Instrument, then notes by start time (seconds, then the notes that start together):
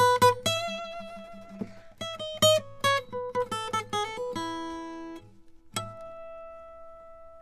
acoustic guitar
0.00 B4
0.22 B4
0.46 E5
2.02 E5
2.21 D#5
2.43 D#5
2.58 C#5
2.85 C#5
3.14 B4
3.36 B4
3.52 A4
3.74 A4
3.94 G#4
4.05 A4
4.17 B4
4.37 E4
5.77 E5